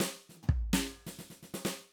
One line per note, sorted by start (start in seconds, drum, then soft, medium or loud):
0.00 snare loud
0.29 snare soft
0.34 high tom soft
0.43 floor tom medium
0.49 kick loud
0.73 snare loud
1.07 snare medium
1.19 snare medium
1.30 snare soft
1.43 snare soft
1.54 snare medium
1.65 snare loud